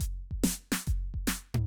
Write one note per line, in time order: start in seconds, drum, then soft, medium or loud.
0.03 closed hi-hat loud
0.03 kick medium
0.31 kick soft
0.44 closed hi-hat loud
0.44 snare loud
0.72 snare loud
0.86 closed hi-hat medium
0.86 kick medium
0.86 snare soft
1.14 kick soft
1.27 closed hi-hat loud
1.27 snare loud
1.54 floor tom loud